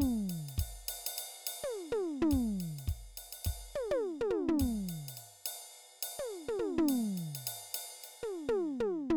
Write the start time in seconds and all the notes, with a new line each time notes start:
0.01 kick, ride
0.29 ride
0.48 ride
0.58 kick, ride
0.88 ride
1.06 ride
1.18 ride
1.47 ride
1.63 high tom
1.92 mid tom
2.21 floor tom
2.31 kick, ride
2.60 ride
2.78 ride
2.88 kick, ride
3.17 ride
3.33 ride
3.45 kick, ride
3.75 high tom
3.91 high tom
4.20 mid tom
4.30 mid tom
4.48 floor tom
4.60 kick, ride
4.89 ride
5.08 ride
5.17 ride
5.46 ride
6.03 ride
6.19 high tom
6.48 mid tom
6.59 mid tom
6.78 floor tom
6.88 ride
7.17 ride
7.35 ride
7.47 ride
7.74 ride
8.04 ride
8.23 mid tom
8.48 mid tom
8.80 mid tom
9.09 floor tom